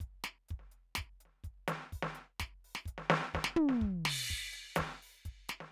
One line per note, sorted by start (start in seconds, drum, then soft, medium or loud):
0.01 closed hi-hat soft
0.01 kick soft
0.25 closed hi-hat medium
0.25 snare medium
0.49 open hi-hat soft
0.49 kick soft
0.60 snare soft
0.72 open hi-hat soft
0.96 open hi-hat loud
0.96 kick soft
0.96 snare medium
1.21 open hi-hat soft
1.26 snare soft
1.44 kick soft
1.44 closed hi-hat soft
1.68 open hi-hat medium
1.68 snare medium
1.93 open hi-hat soft
1.93 kick soft
2.03 snare medium
2.15 open hi-hat soft
2.40 open hi-hat medium
2.40 kick soft
2.40 snare medium
2.65 open hi-hat soft
2.76 snare medium
2.86 kick soft
2.86 closed hi-hat medium
2.99 snare soft
3.11 snare loud
3.22 snare soft
3.35 kick soft
3.35 snare medium
3.45 snare loud
3.56 floor tom loud
3.70 snare soft
3.82 kick soft
4.06 snare loud
4.06 crash loud
4.31 kick soft
4.53 closed hi-hat medium
4.76 closed hi-hat loud
4.76 kick soft
4.76 snare medium
5.03 open hi-hat soft
5.26 closed hi-hat soft
5.26 kick soft
5.50 open hi-hat medium
5.50 snare medium
5.61 snare soft